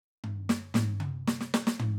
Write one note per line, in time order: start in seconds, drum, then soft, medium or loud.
0.24 floor tom loud
0.49 snare loud
0.74 snare loud
0.74 floor tom loud
1.00 mid tom loud
1.28 snare loud
1.41 snare medium
1.54 snare loud
1.67 snare loud
1.80 floor tom loud